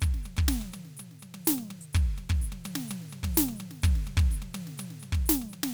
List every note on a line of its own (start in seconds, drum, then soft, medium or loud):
0.01 kick medium
0.01 hi-hat pedal medium
0.01 high tom medium
0.14 snare soft
0.24 hi-hat pedal soft
0.24 high tom medium
0.37 kick medium
0.37 high tom medium
0.49 snare loud
0.49 hi-hat pedal medium
0.62 high tom medium
0.72 hi-hat pedal medium
0.72 high tom medium
0.85 snare soft
0.97 hi-hat pedal medium
0.97 high tom medium
1.12 snare soft
1.20 hi-hat pedal soft
1.20 high tom soft
1.35 high tom medium
1.46 snare loud
1.46 hi-hat pedal medium
1.58 high tom medium
1.67 hi-hat pedal soft
1.67 high tom medium
1.81 closed hi-hat medium
1.94 kick medium
1.94 hi-hat pedal medium
1.94 high tom medium
2.16 hi-hat pedal soft
2.16 high tom soft
2.30 kick medium
2.30 high tom medium
2.42 snare soft
2.42 hi-hat pedal medium
2.52 high tom medium
2.65 hi-hat pedal medium
2.65 high tom medium
2.76 snare medium
2.88 hi-hat pedal medium
2.88 high tom medium
3.02 snare soft
3.09 hi-hat pedal medium
3.13 high tom medium
3.24 kick medium
3.24 high tom medium
3.35 snare loud
3.35 hi-hat pedal medium
3.49 high tom medium
3.57 hi-hat pedal medium
3.57 high tom medium
3.71 snare soft
3.83 kick loud
3.83 hi-hat pedal medium
3.83 high tom medium
3.96 snare soft
4.03 hi-hat pedal soft
4.07 high tom medium
4.18 kick loud
4.18 high tom medium
4.31 snare soft
4.31 hi-hat pedal medium
4.42 high tom medium
4.54 hi-hat pedal soft
4.54 high tom loud
4.67 snare soft
4.78 hi-hat pedal medium
4.78 high tom medium
4.91 snare soft
5.00 hi-hat pedal medium
5.00 high tom soft
5.13 kick medium
5.13 high tom medium
5.26 snare loud
5.26 hi-hat pedal medium
5.42 high tom soft
5.49 hi-hat pedal medium
5.54 high tom medium
5.64 snare loud